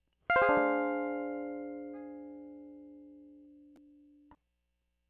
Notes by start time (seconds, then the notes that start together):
0.30 F5
0.36 C5
0.42 G#4
0.50 D4